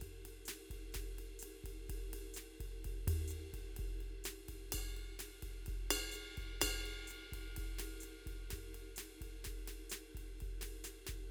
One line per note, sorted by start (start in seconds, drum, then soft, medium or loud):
0.01 kick soft
0.01 hi-hat pedal soft
0.01 ride soft
0.08 kick soft
0.26 ride soft
0.46 snare soft
0.46 hi-hat pedal medium
0.46 ride medium
0.71 kick soft
0.71 ride soft
0.76 kick soft
0.93 kick soft
0.93 snare soft
0.93 hi-hat pedal soft
0.93 ride medium
1.01 kick soft
1.19 ride soft
1.40 snare soft
1.40 hi-hat pedal medium
1.40 ride medium
1.65 kick soft
1.65 ride soft
1.70 kick soft
1.87 kick soft
1.87 hi-hat pedal soft
1.87 ride medium
1.95 kick soft
2.14 snare soft
2.14 ride medium
2.35 snare soft
2.35 hi-hat pedal medium
2.35 ride medium
2.61 kick soft
2.61 ride soft
2.66 kick soft
2.85 kick soft
2.85 ride soft
2.91 kick soft
3.08 floor tom medium
3.08 ride medium
3.28 hi-hat pedal medium
3.28 ride soft
3.54 kick soft
3.54 ride soft
3.59 kick soft
3.77 kick soft
3.77 ride medium
3.85 kick soft
4.01 ride soft
4.25 snare soft
4.25 hi-hat pedal medium
4.25 ride medium
4.49 kick soft
4.49 ride soft
4.55 kick soft
4.73 kick soft
4.73 ride bell medium
4.80 kick soft
4.97 ride soft
5.20 snare soft
5.20 hi-hat pedal medium
5.20 ride medium
5.43 kick soft
5.43 ride soft
5.49 kick soft
5.66 kick soft
5.66 hi-hat pedal soft
5.66 ride soft
5.74 kick soft
5.91 snare soft
5.91 ride bell loud
6.12 hi-hat pedal medium
6.12 ride soft
6.38 kick soft
6.38 ride soft
6.44 kick soft
6.61 kick soft
6.61 snare soft
6.61 ride bell loud
6.69 kick soft
6.86 ride soft
7.08 hi-hat pedal medium
7.08 ride soft
7.33 kick soft
7.33 ride medium
7.38 kick soft
7.57 kick soft
7.57 ride medium
7.64 kick soft
7.79 snare soft
7.79 ride medium
8.01 hi-hat pedal medium
8.01 ride soft
8.27 kick soft
8.27 ride soft
8.32 kick soft
8.51 kick soft
8.51 snare soft
8.51 ride medium
8.59 kick soft
8.75 ride soft
8.97 snare soft
8.97 hi-hat pedal medium
8.97 ride medium
9.22 kick soft
9.22 ride soft
9.27 kick soft
9.44 kick soft
9.44 snare soft
9.44 hi-hat pedal soft
9.44 ride medium
9.52 kick soft
9.58 snare soft
9.68 snare soft
9.68 ride medium
9.90 snare soft
9.90 hi-hat pedal medium
9.90 ride soft
10.15 kick soft
10.15 ride soft
10.21 kick soft
10.38 hi-hat pedal soft
10.38 ride soft
10.43 kick soft
10.48 kick soft
10.62 snare soft
10.62 ride medium
10.73 snare soft
10.85 snare soft
10.85 hi-hat pedal medium
10.85 ride soft
11.07 kick soft
11.07 snare soft
11.07 ride soft
11.15 kick soft